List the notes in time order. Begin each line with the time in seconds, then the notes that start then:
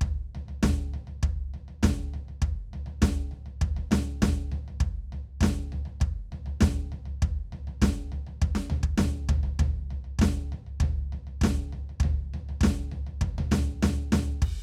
0.01 kick, floor tom
0.35 floor tom
0.48 floor tom
0.63 kick, snare, floor tom
0.94 floor tom
1.07 floor tom
1.23 kick, floor tom
1.54 floor tom
1.68 floor tom
1.83 kick, snare, floor tom
2.14 floor tom
2.28 floor tom
2.42 kick, floor tom
2.73 floor tom
2.86 floor tom
3.02 kick, snare, floor tom
3.31 floor tom
3.46 floor tom
3.61 kick, floor tom
3.77 floor tom
3.91 snare, floor tom
4.22 kick, snare, floor tom
4.52 floor tom
4.68 floor tom
4.80 kick, floor tom
5.12 floor tom
5.41 kick, snare, floor tom
5.72 floor tom
5.85 floor tom
6.00 kick, floor tom
6.32 floor tom
6.46 floor tom
6.61 kick, snare, floor tom
6.92 floor tom
7.05 floor tom
7.22 kick, floor tom
7.52 floor tom
7.67 floor tom
7.82 kick, snare, floor tom
8.12 floor tom
8.27 floor tom
8.42 kick, floor tom
8.55 snare
8.70 floor tom
8.83 kick
8.98 snare, floor tom
9.29 kick, floor tom
9.43 floor tom
9.59 kick, floor tom
9.90 floor tom
10.04 floor tom
10.19 kick, snare, floor tom
10.52 floor tom
10.67 floor tom
10.80 kick, floor tom
11.12 floor tom
11.27 floor tom
11.41 kick, snare, floor tom
11.72 floor tom
11.89 floor tom
12.00 kick, floor tom
12.34 floor tom
12.49 floor tom
12.61 kick, snare, floor tom
12.92 floor tom
13.07 floor tom
13.21 kick, floor tom
13.38 floor tom
13.51 snare, floor tom
13.83 snare, floor tom
14.12 snare, floor tom
14.42 kick, crash